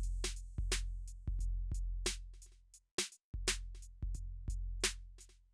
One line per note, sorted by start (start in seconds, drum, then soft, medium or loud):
0.01 closed hi-hat medium
0.01 kick soft
0.25 snare medium
0.37 closed hi-hat medium
0.59 kick soft
0.72 closed hi-hat medium
0.72 snare medium
1.08 closed hi-hat medium
1.28 kick soft
1.40 closed hi-hat medium
1.40 kick soft
1.72 closed hi-hat medium
1.72 kick soft
2.05 closed hi-hat medium
2.05 snare loud
2.05 hi-hat pedal soft
2.34 snare soft
2.42 closed hi-hat medium
2.47 snare soft
2.52 snare soft
2.74 closed hi-hat medium
2.99 snare loud
3.12 closed hi-hat medium
3.34 kick soft
3.48 closed hi-hat medium
3.48 snare loud
3.75 snare soft
3.83 closed hi-hat medium
4.03 kick soft
4.15 closed hi-hat medium
4.15 kick soft
4.49 closed hi-hat medium
4.49 kick soft
4.81 closed hi-hat medium
4.81 snare loud
4.81 hi-hat pedal soft
5.19 closed hi-hat medium
5.19 snare soft
5.30 snare soft